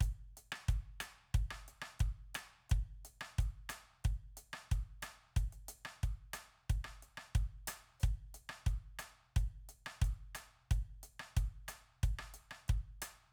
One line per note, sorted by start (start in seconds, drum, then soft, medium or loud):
0.01 kick medium
0.01 closed hi-hat medium
0.37 closed hi-hat medium
0.52 cross-stick medium
0.69 kick medium
0.69 closed hi-hat soft
1.01 cross-stick medium
1.01 closed hi-hat medium
1.35 kick medium
1.35 closed hi-hat soft
1.51 cross-stick medium
1.68 closed hi-hat soft
1.82 cross-stick medium
2.00 kick medium
2.00 closed hi-hat soft
2.35 cross-stick medium
2.35 closed hi-hat medium
2.70 kick medium
2.70 closed hi-hat soft
3.05 closed hi-hat medium
3.21 cross-stick medium
3.39 kick medium
3.39 closed hi-hat soft
3.70 cross-stick medium
3.70 closed hi-hat medium
4.05 kick medium
4.05 closed hi-hat soft
4.37 closed hi-hat medium
4.53 cross-stick medium
4.72 kick medium
4.72 closed hi-hat soft
5.03 cross-stick medium
5.03 closed hi-hat medium
5.37 kick medium
5.37 closed hi-hat soft
5.53 closed hi-hat soft
5.69 closed hi-hat medium
5.85 cross-stick medium
6.03 kick soft
6.03 closed hi-hat soft
6.34 cross-stick medium
6.34 closed hi-hat medium
6.70 kick medium
6.70 closed hi-hat soft
6.85 cross-stick medium
7.03 closed hi-hat soft
7.18 cross-stick medium
7.35 kick medium
7.35 closed hi-hat soft
7.68 cross-stick medium
7.68 open hi-hat loud
8.00 kick medium
8.00 hi-hat pedal soft
8.05 closed hi-hat soft
8.35 closed hi-hat medium
8.49 cross-stick medium
8.67 kick medium
8.67 closed hi-hat soft
8.99 cross-stick medium
8.99 closed hi-hat medium
9.37 kick medium
9.37 closed hi-hat soft
9.69 closed hi-hat medium
9.87 cross-stick medium
10.02 kick medium
10.02 closed hi-hat soft
10.35 cross-stick medium
10.35 closed hi-hat medium
10.71 kick medium
10.71 closed hi-hat soft
11.03 closed hi-hat medium
11.20 cross-stick medium
11.37 kick medium
11.37 closed hi-hat medium
11.68 cross-stick medium
11.68 closed hi-hat medium
12.03 kick medium
12.03 closed hi-hat soft
12.19 cross-stick medium
12.34 closed hi-hat medium
12.51 cross-stick medium
12.68 kick medium
12.68 closed hi-hat soft
13.02 cross-stick medium
13.02 open hi-hat medium